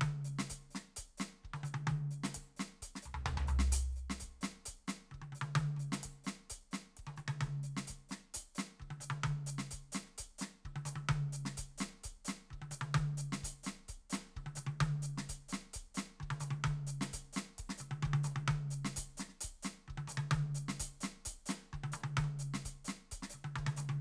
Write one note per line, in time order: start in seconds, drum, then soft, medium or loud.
0.01 kick soft
0.01 high tom loud
0.24 hi-hat pedal medium
0.39 snare medium
0.50 closed hi-hat medium
0.50 kick soft
0.70 hi-hat pedal soft
0.75 snare medium
0.96 closed hi-hat medium
0.96 kick soft
1.17 snare medium
1.17 hi-hat pedal soft
1.44 kick soft
1.44 high tom soft
1.53 high tom medium
1.63 hi-hat pedal soft
1.63 high tom medium
1.74 high tom medium
1.87 kick soft
1.87 high tom loud
2.11 hi-hat pedal soft
2.23 snare medium
2.34 kick soft
2.34 closed hi-hat medium
2.56 snare medium
2.56 hi-hat pedal soft
2.82 closed hi-hat medium
2.82 kick soft
2.95 snare soft
3.02 floor tom soft
3.02 hi-hat pedal medium
3.14 floor tom medium
3.26 kick soft
3.26 floor tom loud
3.37 floor tom loud
3.47 floor tom medium
3.47 hi-hat pedal soft
3.59 snare medium
3.72 closed hi-hat loud
3.72 kick soft
3.92 hi-hat pedal soft
3.92 open hi-hat soft
4.10 snare medium
4.20 closed hi-hat medium
4.20 kick soft
4.41 snare medium
4.41 hi-hat pedal medium
4.65 closed hi-hat medium
4.65 kick soft
4.87 snare medium
4.87 hi-hat pedal medium
5.11 kick soft
5.11 high tom soft
5.22 high tom medium
5.32 hi-hat pedal soft
5.32 high tom soft
5.41 high tom medium
5.55 kick soft
5.55 high tom loud
5.76 hi-hat pedal soft
5.76 high tom soft
5.92 snare medium
6.03 kick soft
6.03 closed hi-hat medium
6.24 snare medium
6.24 hi-hat pedal soft
6.38 snare soft
6.50 closed hi-hat medium
6.50 kick soft
6.71 snare medium
6.71 hi-hat pedal soft
6.83 cross-stick soft
6.97 kick soft
6.97 closed hi-hat soft
7.07 high tom medium
7.16 hi-hat pedal soft
7.16 high tom medium
7.28 high tom medium
7.41 kick soft
7.41 high tom loud
7.63 hi-hat pedal soft
7.77 snare medium
7.87 closed hi-hat medium
7.87 kick soft
8.09 snare medium
8.09 hi-hat pedal soft
8.34 closed hi-hat loud
8.34 kick soft
8.55 snare medium
8.55 hi-hat pedal medium
8.80 kick soft
8.80 high tom soft
8.90 high tom medium
9.00 hi-hat pedal medium
9.00 high tom soft
9.10 high tom medium
9.23 kick soft
9.23 high tom loud
9.46 hi-hat pedal medium
9.58 snare medium
9.71 closed hi-hat medium
9.71 kick soft
9.92 snare medium
9.92 hi-hat pedal loud
10.06 snare soft
10.18 closed hi-hat medium
10.18 kick soft
10.38 snare medium
10.38 hi-hat pedal medium
10.65 kick soft
10.65 high tom soft
10.76 high tom medium
10.85 hi-hat pedal medium
10.85 high tom medium
10.95 high tom medium
11.09 kick soft
11.09 high tom loud
11.32 hi-hat pedal medium
11.45 snare medium
11.57 closed hi-hat medium
11.57 kick soft
11.78 snare medium
11.78 hi-hat pedal medium
12.03 closed hi-hat medium
12.03 kick soft
12.25 snare medium
12.25 hi-hat pedal medium
12.50 kick soft
12.50 high tom soft
12.62 high tom medium
12.71 hi-hat pedal medium
12.71 high tom medium
12.81 high tom medium
12.94 kick soft
12.94 high tom loud
13.17 hi-hat pedal medium
13.32 snare medium
13.43 closed hi-hat medium
13.43 kick soft
13.63 snare medium
13.63 hi-hat pedal medium
13.88 closed hi-hat medium
13.88 kick soft
14.10 snare medium
14.10 hi-hat pedal medium
14.36 kick soft
14.36 high tom soft
14.46 high tom medium
14.55 hi-hat pedal medium
14.55 high tom medium
14.66 high tom medium
14.80 kick soft
14.80 high tom loud
15.02 hi-hat pedal medium
15.17 snare medium
15.29 closed hi-hat medium
15.29 kick soft
15.48 hi-hat pedal medium
15.53 snare medium
15.73 closed hi-hat medium
15.73 kick soft
15.94 snare medium
15.94 hi-hat pedal medium
16.20 kick soft
16.20 high tom medium
16.30 high tom medium
16.40 hi-hat pedal medium
16.50 high tom medium
16.64 kick soft
16.64 high tom loud
16.87 hi-hat pedal medium
17.01 snare medium
17.13 closed hi-hat medium
17.13 kick soft
17.33 snare medium
17.33 hi-hat pedal medium
17.58 kick soft
17.58 closed hi-hat medium
17.69 snare medium
17.78 hi-hat pedal medium
17.78 high tom soft
17.91 high tom medium
18.02 kick soft
18.02 high tom loud
18.13 high tom loud
18.23 hi-hat pedal medium
18.23 high tom medium
18.36 high tom medium
18.48 kick soft
18.48 high tom loud
18.70 hi-hat pedal medium
18.85 snare medium
18.96 closed hi-hat loud
18.96 kick soft
19.17 snare medium
19.17 hi-hat pedal medium
19.29 snare soft
19.41 closed hi-hat loud
19.41 kick soft
19.62 snare medium
19.62 hi-hat pedal medium
19.88 kick soft
19.88 high tom soft
19.97 high tom medium
20.07 hi-hat pedal medium
20.07 high tom medium
20.17 high tom medium
20.31 kick soft
20.31 high tom loud
20.55 hi-hat pedal medium
20.68 snare medium
20.80 closed hi-hat loud
20.80 kick soft
21.00 snare medium
21.00 hi-hat pedal medium
21.25 closed hi-hat medium
21.25 kick soft
21.46 snare medium
21.46 hi-hat pedal medium
21.73 kick soft
21.73 high tom medium
21.83 high tom medium
21.92 hi-hat pedal medium
21.92 high tom medium
22.03 high tom medium
22.17 kick soft
22.17 high tom loud
22.24 high tom soft
22.39 hi-hat pedal medium
22.54 snare medium
22.65 closed hi-hat medium
22.65 kick soft
22.84 snare medium
22.84 hi-hat pedal medium
23.11 closed hi-hat medium
23.11 kick soft
23.22 snare medium
23.30 hi-hat pedal medium
23.34 high tom soft
23.44 high tom medium
23.56 kick soft
23.56 high tom medium
23.66 high tom loud
23.76 hi-hat pedal medium
23.76 high tom medium
23.89 high tom loud